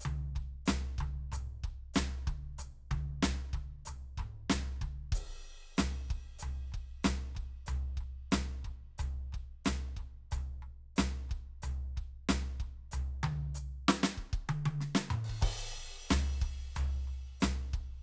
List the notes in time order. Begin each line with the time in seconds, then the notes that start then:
0.01 hi-hat pedal
0.06 floor tom, high tom
0.36 kick, floor tom
0.66 snare, floor tom, hi-hat pedal
0.99 kick, floor tom, high tom
1.33 floor tom, hi-hat pedal, mid tom
1.64 kick, floor tom
1.95 snare, floor tom, hi-hat pedal
2.28 kick, floor tom, high tom
2.59 floor tom, hi-hat pedal
2.92 kick, floor tom, high tom
3.23 snare, floor tom, hi-hat pedal
3.54 kick, floor tom, high tom
3.86 floor tom, hi-hat pedal
4.18 kick, floor tom, mid tom
4.50 snare, floor tom, hi-hat pedal
4.82 kick, floor tom, high tom
5.13 kick, hi-hat pedal, crash
5.78 snare, floor tom, hi-hat pedal
6.10 kick, floor tom
6.40 floor tom, hi-hat pedal
6.73 kick, floor tom
7.04 snare, floor tom, hi-hat pedal
7.36 kick, floor tom
7.67 floor tom, hi-hat pedal
7.98 kick, floor tom
8.32 snare, floor tom, hi-hat pedal
8.65 kick, floor tom
8.99 kick, floor tom, hi-hat pedal
9.33 kick, floor tom
9.65 snare, floor tom, hi-hat pedal
9.97 kick, floor tom
10.32 kick, floor tom, hi-hat pedal
10.38 floor tom
10.63 floor tom
10.97 snare, floor tom, hi-hat pedal
11.30 kick, floor tom
11.63 floor tom, hi-hat pedal
11.97 kick, floor tom
12.29 snare, floor tom, hi-hat pedal
12.60 kick, floor tom
12.92 floor tom, hi-hat pedal
13.24 high tom, floor tom
13.55 floor tom, hi-hat pedal
13.89 snare
14.04 snare
14.18 kick
14.34 kick
14.50 high tom
14.66 high tom
14.81 snare
14.96 snare
15.11 mid tom
15.25 crash
15.30 kick
15.42 kick, crash
15.76 floor tom
16.10 snare, floor tom, hi-hat pedal
16.42 kick, floor tom
16.76 floor tom, hi-hat pedal
17.08 floor tom
17.41 snare, floor tom, hi-hat pedal
17.74 kick, floor tom